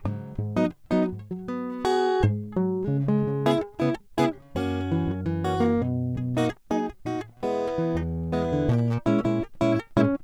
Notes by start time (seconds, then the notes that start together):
0.06 G#2 C#3 F#3 D4
0.40 G#2
0.57 F#3 B3 D#4
0.91 F#3 B3 D#4
1.14 G#2
1.32 F#3
1.49 B3
1.85 F#4 G#4
2.25 G#2
2.57 F#3
2.89 C#3 G#3
3.10 G#3
3.29 C#3
3.47 B3 E4 G#4
3.80 C3 B3 E4
4.19 C#3 B3 E4 G#4
4.56 F#2 A#3 C#4 F#4
4.93 E3
5.09 F#2
5.26 E3
5.45 A#3 C#4 F#4
5.61 A#3
5.83 B2
6.16 F#2 B2
6.36 F#3 A#3 D#4 F#4
6.72 A#2 F#3 A#3 D#4 G#4
7.06 B2 A#3 D#4 F#4
7.38 B2
7.44 G#3 B3 E4
7.79 E3
7.97 E2
8.33 G#3 B3 E4
8.54 D3
8.70 A#2
9.07 A#2 G#3 C#4 E4
9.26 A#2 G#3 C#4 E4
9.62 A#2 G#3 C#4 E4
9.97 A#2 G#3 C#4 E4